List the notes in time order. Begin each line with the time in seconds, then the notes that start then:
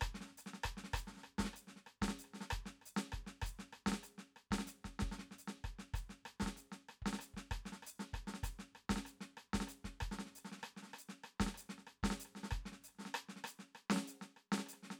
0.01 kick, cross-stick
0.14 snare
0.21 snare
0.26 snare
0.31 snare
0.37 cross-stick, hi-hat pedal
0.46 snare
0.54 snare
0.64 kick, cross-stick
0.77 snare
0.84 snare
0.89 snare
0.93 kick, cross-stick, hi-hat pedal
1.07 snare
1.12 snare
1.17 snare
1.23 cross-stick
1.38 kick, snare
1.44 snare
1.53 cross-stick, hi-hat pedal
1.62 snare
1.67 snare
1.76 snare
1.86 cross-stick
2.02 kick, snare
2.08 snare
2.16 snare, hi-hat pedal
2.24 cross-stick
2.31 snare
2.34 snare
2.50 kick, cross-stick
2.66 snare
2.82 cross-stick
2.86 hi-hat pedal
2.96 snare
3.12 kick, cross-stick
3.27 snare
3.42 kick, cross-stick
3.46 hi-hat pedal
3.59 snare
3.73 cross-stick
3.86 kick, snare
3.92 snare
4.03 cross-stick, hi-hat pedal
4.18 snare
4.36 cross-stick
4.51 kick, snare
4.58 snare
4.66 snare, hi-hat pedal
4.84 kick, snare
4.99 kick, snare
5.11 snare
5.19 snare
5.31 snare
5.38 hi-hat pedal
5.48 snare
5.64 kick, cross-stick
5.79 snare
5.94 kick, cross-stick, hi-hat pedal
6.09 snare
6.25 cross-stick
6.40 kick, snare
6.46 snare
6.56 snare, hi-hat pedal
6.72 snare
6.89 cross-stick
7.02 kick, snare
7.13 snare
7.19 cross-stick, hi-hat pedal
7.34 kick, snare
7.51 kick, cross-stick
7.65 snare
7.72 snare
7.82 cross-stick
7.87 hi-hat pedal
7.99 snare
8.13 kick, cross-stick
8.27 snare
8.34 snare
8.43 kick, cross-stick, hi-hat pedal
8.59 snare
8.75 cross-stick
8.89 kick, snare
8.96 snare
9.05 cross-stick, hi-hat pedal
9.21 snare
9.37 cross-stick
9.53 kick, snare
9.60 snare
9.67 cross-stick, hi-hat pedal
9.84 kick, snare
10.00 kick, cross-stick
10.11 snare
10.19 snare
10.26 snare
10.30 snare
10.35 cross-stick, hi-hat pedal
10.45 snare
10.52 snare
10.57 snare
10.63 cross-stick
10.77 snare
10.83 snare
10.87 snare
10.93 cross-stick
10.98 hi-hat pedal
11.09 snare
11.24 cross-stick
11.40 kick, snare
11.46 snare
11.54 cross-stick, hi-hat pedal
11.61 cross-stick
11.69 snare
11.78 snare
11.87 cross-stick
12.03 kick, snare
12.10 snare
12.18 snare, hi-hat pedal
12.25 cross-stick
12.30 snare
12.35 snare
12.43 snare
12.51 kick, cross-stick
12.65 snare
12.72 snare
12.81 snare, hi-hat pedal
12.88 cross-stick
12.95 snare
12.99 snare
13.05 snare
13.14 cross-stick
13.29 snare
13.36 snare
13.44 cross-stick, hi-hat pedal
13.59 snare
13.75 cross-stick
13.90 snare
13.96 snare
14.04 cross-stick, hi-hat pedal
14.11 snare
14.21 snare
14.36 cross-stick
14.52 snare
14.58 snare
14.66 cross-stick, hi-hat pedal
14.73 cross-stick
14.80 snare
14.83 snare
14.90 snare